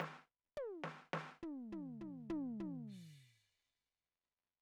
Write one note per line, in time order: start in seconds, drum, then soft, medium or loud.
0.01 snare soft
0.01 hi-hat pedal soft
0.57 high tom medium
0.84 snare soft
1.14 snare medium
1.43 floor tom soft
1.72 floor tom soft
2.01 floor tom soft
2.30 floor tom medium
2.60 floor tom soft
2.88 crash soft